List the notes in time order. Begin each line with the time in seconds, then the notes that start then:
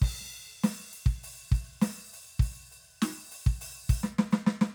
0.03 kick, crash
0.21 snare
0.26 snare
0.34 open hi-hat
0.64 open hi-hat, snare
0.94 open hi-hat
1.07 kick
1.24 open hi-hat
1.52 open hi-hat, kick
1.82 open hi-hat, snare
2.14 open hi-hat
2.40 open hi-hat, kick
2.72 open hi-hat
3.03 open hi-hat, snare
3.32 open hi-hat
3.47 kick
3.62 open hi-hat
3.90 open hi-hat, kick
4.04 snare, hi-hat pedal
4.19 snare
4.32 snare, hi-hat pedal
4.48 snare
4.62 snare